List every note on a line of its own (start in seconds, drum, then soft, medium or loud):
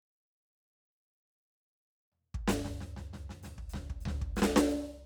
2.12 mid tom soft
2.34 kick soft
2.47 snare loud
2.47 hi-hat pedal medium
2.47 floor tom medium
2.64 snare soft
2.64 floor tom medium
2.80 snare soft
2.80 floor tom soft
2.96 snare soft
2.96 floor tom soft
3.13 snare soft
3.13 floor tom soft
3.29 snare soft
3.29 floor tom soft
3.43 snare soft
3.43 floor tom soft
3.43 hi-hat pedal soft
3.58 kick soft
3.69 hi-hat pedal soft
3.73 snare soft
3.73 floor tom medium
3.89 kick soft
4.00 hi-hat pedal soft
4.05 snare soft
4.05 floor tom medium
4.21 kick soft
4.36 snare medium
4.36 hi-hat pedal soft
4.42 snare loud
4.56 snare loud
4.69 hi-hat pedal soft